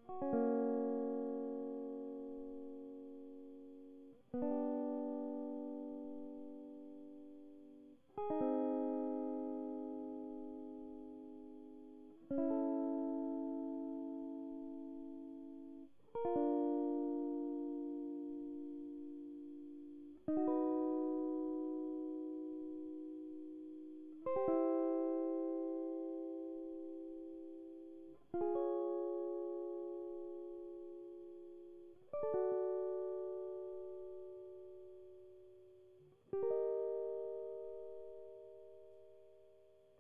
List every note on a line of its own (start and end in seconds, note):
0.10 3.58 F#4
0.22 4.20 C#4
0.34 3.96 A#3
4.35 8.02 B3
4.43 8.02 D4
4.52 7.12 G4
8.19 12.22 G#4
8.32 12.37 D#4
8.42 12.17 C4
12.31 15.90 C#4
12.39 15.91 E4
12.51 15.90 A4
16.15 19.37 A#4
16.25 20.22 F4
16.37 20.22 D4
20.30 24.28 D#4
20.38 24.20 F#4
20.48 23.60 B4
24.30 28.11 C5
24.38 28.24 G4
24.49 28.09 E4
28.34 32.00 F4
28.41 31.81 G#4
28.56 30.74 C#5
32.14 35.09 D5
32.26 34.86 A4
32.35 35.09 F#4
36.33 39.32 G4
36.44 39.16 A#4
36.52 39.97 D#5